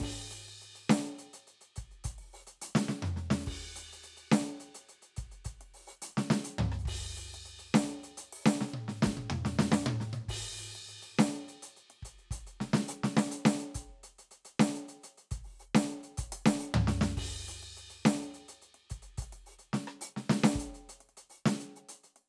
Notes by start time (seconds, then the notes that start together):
0.01 kick, crash
0.07 kick
0.09 kick
0.20 closed hi-hat
0.31 closed hi-hat
0.48 closed hi-hat
0.61 closed hi-hat
0.75 closed hi-hat
0.89 snare
1.05 closed hi-hat
1.18 closed hi-hat
1.33 closed hi-hat
1.47 closed hi-hat
1.61 closed hi-hat
1.76 closed hi-hat, kick
1.91 closed hi-hat
2.04 closed hi-hat, kick
2.11 kick
2.18 open hi-hat
2.33 open hi-hat
2.40 hi-hat pedal
2.47 closed hi-hat
2.62 closed hi-hat
2.75 snare
2.88 snare
3.02 hi-hat pedal, mid tom
3.16 snare
3.30 snare
3.41 hi-hat pedal
3.46 kick, crash
3.56 kick
3.76 closed hi-hat
3.93 closed hi-hat
4.03 closed hi-hat
4.17 closed hi-hat
4.32 snare
4.46 closed hi-hat
4.60 closed hi-hat
4.75 closed hi-hat
4.89 closed hi-hat
5.02 closed hi-hat
5.16 closed hi-hat, kick
5.24 kick
5.26 kick
5.31 closed hi-hat
5.45 closed hi-hat, kick
5.61 closed hi-hat
5.74 open hi-hat
5.87 open hi-hat
5.92 hi-hat pedal
6.02 closed hi-hat
6.17 snare
6.30 snare
6.44 closed hi-hat
6.58 floor tom
6.72 cross-stick
6.79 hi-hat pedal
6.85 kick, crash
6.91 kick
6.94 kick
7.05 closed hi-hat
7.17 closed hi-hat
7.34 closed hi-hat
7.45 closed hi-hat
7.59 closed hi-hat
7.74 snare
7.89 closed hi-hat
8.03 closed hi-hat
8.17 closed hi-hat
8.32 open hi-hat
8.43 snare, hi-hat pedal
8.61 snare
8.68 hi-hat pedal
8.74 high tom
8.88 snare
8.97 hi-hat pedal
9.02 kick, snare
9.17 high tom
9.30 mid tom
9.45 snare
9.59 snare
9.72 snare
9.85 hi-hat pedal, high tom
10.00 snare
10.12 hi-hat pedal, high tom
10.28 kick, crash
10.58 closed hi-hat
10.75 closed hi-hat
10.88 closed hi-hat
11.02 closed hi-hat
11.19 snare
11.34 closed hi-hat
11.48 closed hi-hat
11.62 closed hi-hat
11.76 closed hi-hat
11.90 closed hi-hat
12.02 closed hi-hat, kick
12.18 closed hi-hat
12.31 closed hi-hat, kick
12.36 kick
12.47 closed hi-hat
12.60 snare
12.73 snare
12.88 open hi-hat, hi-hat pedal
13.03 snare
13.17 snare
13.31 closed hi-hat
13.45 snare
13.59 closed hi-hat
13.75 closed hi-hat, kick
14.03 closed hi-hat
14.18 closed hi-hat
14.31 closed hi-hat
14.45 closed hi-hat
14.59 snare
14.75 closed hi-hat
14.88 closed hi-hat
15.02 closed hi-hat, hi-hat pedal
15.17 open hi-hat
15.31 closed hi-hat, kick
15.37 kick
15.41 open hi-hat, kick
15.59 open hi-hat, hi-hat pedal
15.75 snare
15.90 closed hi-hat
16.03 closed hi-hat
16.17 closed hi-hat, kick
16.24 kick
16.32 closed hi-hat
16.46 snare
16.59 open hi-hat
16.74 floor tom
16.87 snare
17.01 snare
17.17 kick, crash
17.25 kick
17.48 closed hi-hat
17.62 closed hi-hat
17.77 closed hi-hat
17.90 closed hi-hat
18.05 snare
18.22 closed hi-hat
18.34 closed hi-hat
18.48 closed hi-hat
18.62 closed hi-hat
18.74 closed hi-hat
18.90 closed hi-hat, kick
19.02 closed hi-hat
19.18 closed hi-hat, kick
19.22 closed hi-hat
19.29 hi-hat pedal, open hi-hat
19.46 open hi-hat
19.53 hi-hat pedal
19.59 closed hi-hat
19.73 snare
19.87 cross-stick
20.01 open hi-hat
20.16 snare
20.29 snare
20.44 snare
20.49 hi-hat pedal
20.55 kick
20.59 closed hi-hat, kick
20.74 closed hi-hat
20.89 closed hi-hat
21.00 closed hi-hat
21.09 closed hi-hat
21.17 closed hi-hat
21.30 open hi-hat
21.46 snare
21.60 open hi-hat
21.76 open hi-hat, hi-hat pedal
21.89 closed hi-hat
22.04 closed hi-hat
22.16 closed hi-hat